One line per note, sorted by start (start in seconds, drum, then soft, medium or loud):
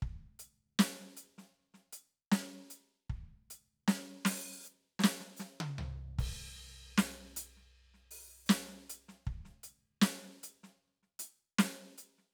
0.01 kick medium
0.01 closed hi-hat soft
0.40 closed hi-hat medium
0.79 snare loud
1.01 snare soft
1.17 closed hi-hat medium
1.38 snare soft
1.74 snare soft
1.93 closed hi-hat medium
2.32 snare loud
2.53 snare soft
2.71 closed hi-hat medium
3.10 kick soft
3.51 closed hi-hat medium
3.88 snare loud
4.25 open hi-hat loud
4.25 snare loud
4.65 hi-hat pedal medium
5.00 snare medium
5.04 snare loud
5.21 snare soft
5.37 snare medium
5.37 hi-hat pedal medium
5.61 high tom loud
5.79 floor tom medium
6.19 kick medium
6.19 crash medium
6.98 snare loud
7.11 snare soft
7.17 snare soft
7.37 closed hi-hat loud
7.57 snare soft
7.94 snare soft
8.11 open hi-hat medium
8.46 snare loud
8.46 hi-hat pedal medium
8.69 snare soft
8.90 closed hi-hat medium
9.09 snare soft
9.26 kick medium
9.26 closed hi-hat soft
9.45 snare soft
9.64 closed hi-hat medium
10.02 snare loud
10.24 snare soft
10.44 closed hi-hat medium
10.64 snare soft
11.03 snare soft
11.20 closed hi-hat loud
11.59 snare loud
11.64 snare medium
11.98 closed hi-hat medium
12.19 snare soft